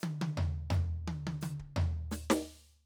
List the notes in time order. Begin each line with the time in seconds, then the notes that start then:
0.00 hi-hat pedal, high tom
0.04 closed hi-hat
0.21 high tom
0.37 floor tom
0.70 floor tom, hi-hat pedal
1.07 high tom
1.27 high tom
1.41 hi-hat pedal, high tom
1.59 kick
1.76 floor tom
2.11 snare, hi-hat pedal
2.30 snare